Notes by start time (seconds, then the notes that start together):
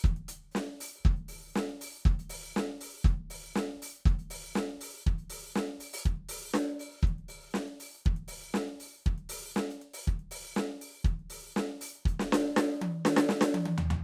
0.01 kick, hi-hat pedal
0.06 closed hi-hat
0.16 closed hi-hat
0.28 closed hi-hat
0.44 open hi-hat
0.51 snare, hi-hat pedal
0.66 closed hi-hat
0.80 open hi-hat
0.95 open hi-hat
1.00 kick, hi-hat pedal
1.05 kick
1.16 closed hi-hat
1.28 open hi-hat
1.43 open hi-hat
1.53 snare, hi-hat pedal
1.69 closed hi-hat
1.81 open hi-hat
1.95 open hi-hat
2.03 kick, hi-hat pedal
2.08 closed hi-hat
2.19 closed hi-hat
2.30 open hi-hat
2.44 open hi-hat
2.54 snare, hi-hat pedal
2.70 kick, closed hi-hat
2.81 open hi-hat
2.95 open hi-hat
3.02 kick, hi-hat pedal
3.08 closed hi-hat
3.17 closed hi-hat
3.30 open hi-hat
3.45 open hi-hat
3.55 snare, hi-hat pedal
3.71 closed hi-hat
3.76 kick
3.82 open hi-hat
3.97 hi-hat pedal, open hi-hat
4.06 kick, closed hi-hat
4.19 closed hi-hat
4.30 open hi-hat
4.44 open hi-hat
4.54 snare, hi-hat pedal
4.69 closed hi-hat
4.77 kick
4.81 open hi-hat
4.94 open hi-hat
5.02 hi-hat pedal
5.06 kick, closed hi-hat
5.18 closed hi-hat
5.30 open hi-hat
5.43 open hi-hat
5.54 snare, hi-hat pedal
5.67 closed hi-hat
5.78 open hi-hat, kick
5.93 open hi-hat
6.00 hi-hat pedal
6.05 kick, closed hi-hat
6.16 closed hi-hat
6.29 open hi-hat
6.43 open hi-hat
6.52 snare, hi-hat pedal
6.67 closed hi-hat
6.79 open hi-hat
6.94 open hi-hat
7.00 kick, hi-hat pedal
7.07 closed hi-hat
7.18 closed hi-hat
7.28 open hi-hat
7.44 open hi-hat
7.53 snare, hi-hat pedal
7.68 closed hi-hat
7.80 open hi-hat
7.95 open hi-hat
8.01 hi-hat pedal
8.05 kick, closed hi-hat
8.16 closed hi-hat
8.28 open hi-hat
8.42 open hi-hat
8.52 snare, hi-hat pedal
8.68 closed hi-hat
8.76 kick
8.80 open hi-hat
8.94 open hi-hat
9.02 kick, closed hi-hat, hi-hat pedal
9.18 closed hi-hat
9.29 open hi-hat
9.43 open hi-hat
9.54 snare, hi-hat pedal
9.70 closed hi-hat
9.81 closed hi-hat
9.94 open hi-hat
10.04 kick, closed hi-hat, hi-hat pedal
10.19 closed hi-hat
10.31 open hi-hat
10.47 open hi-hat
10.55 snare, hi-hat pedal
10.70 closed hi-hat
10.81 open hi-hat
10.94 open hi-hat
11.01 kick, hi-hat pedal
11.06 closed hi-hat
11.19 closed hi-hat
11.30 open hi-hat
11.44 open hi-hat
11.53 snare, hi-hat pedal
11.69 closed hi-hat
11.81 open hi-hat
11.95 open hi-hat
12.03 kick, hi-hat pedal
12.08 closed hi-hat
12.20 snare
12.32 snare
12.56 snare
12.82 high tom
13.05 snare
13.17 snare
13.29 snare
13.41 snare
13.54 high tom
13.66 high tom
13.78 floor tom
13.90 floor tom